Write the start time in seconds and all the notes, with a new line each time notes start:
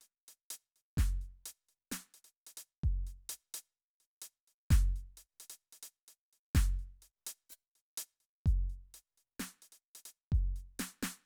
0.01 closed hi-hat
0.28 closed hi-hat
0.50 closed hi-hat
0.76 closed hi-hat
0.97 kick, snare, closed hi-hat
1.21 closed hi-hat
1.46 closed hi-hat
1.69 closed hi-hat
1.91 closed hi-hat, snare
2.14 closed hi-hat
2.24 closed hi-hat
2.46 closed hi-hat
2.57 closed hi-hat
2.83 kick, closed hi-hat
3.07 closed hi-hat
3.29 closed hi-hat
3.54 closed hi-hat
3.79 closed hi-hat
4.00 closed hi-hat
4.22 closed hi-hat
4.47 closed hi-hat
4.70 closed hi-hat, kick, snare
4.96 closed hi-hat
5.17 closed hi-hat
5.40 closed hi-hat
5.50 closed hi-hat
5.72 closed hi-hat
5.83 closed hi-hat
6.08 closed hi-hat
6.33 closed hi-hat
6.55 kick, snare, closed hi-hat
6.79 closed hi-hat
7.02 closed hi-hat
7.27 closed hi-hat
7.49 hi-hat pedal
7.54 closed hi-hat
7.75 closed hi-hat
7.97 closed hi-hat
8.20 closed hi-hat
8.46 kick, closed hi-hat
8.70 closed hi-hat
8.94 closed hi-hat
9.17 closed hi-hat
9.39 snare, closed hi-hat
9.62 closed hi-hat
9.72 closed hi-hat
9.95 closed hi-hat
10.05 closed hi-hat
10.32 kick, closed hi-hat
10.56 closed hi-hat
10.79 snare, closed hi-hat
11.03 snare, closed hi-hat